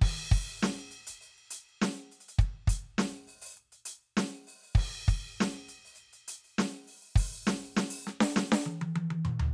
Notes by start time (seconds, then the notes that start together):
0.02 kick, crash
0.15 open hi-hat
0.32 open hi-hat, kick
0.48 open hi-hat
0.62 snare, hi-hat pedal
0.78 closed hi-hat
0.91 closed hi-hat
1.07 closed hi-hat, kick
1.21 open hi-hat
1.26 hi-hat pedal
1.38 closed hi-hat
1.51 closed hi-hat
1.69 closed hi-hat
1.82 snare
1.96 closed hi-hat
2.12 closed hi-hat
2.20 closed hi-hat
2.28 closed hi-hat
2.39 open hi-hat, kick, hi-hat pedal
2.68 closed hi-hat, kick
2.83 open hi-hat
2.98 snare
3.12 open hi-hat
3.27 open hi-hat
3.42 open hi-hat
3.51 hi-hat pedal
3.57 closed hi-hat
3.72 closed hi-hat
3.85 closed hi-hat
4.03 open hi-hat
4.17 snare
4.32 open hi-hat
4.47 open hi-hat
4.62 open hi-hat
4.75 kick, crash
4.93 open hi-hat
5.08 closed hi-hat, kick
5.25 closed hi-hat
5.41 snare
5.69 closed hi-hat
5.85 open hi-hat
5.95 hi-hat pedal
6.01 closed hi-hat
6.13 closed hi-hat
6.28 closed hi-hat
6.44 open hi-hat
6.58 snare
6.72 open hi-hat
6.87 open hi-hat
7.02 open hi-hat
7.16 open hi-hat, kick
7.33 open hi-hat
7.47 snare
7.63 open hi-hat
7.77 snare
7.90 open hi-hat
8.07 snare
8.21 snare
8.36 snare
8.52 snare
8.66 high tom
8.81 high tom
8.96 high tom
9.11 high tom
9.25 mid tom
9.40 floor tom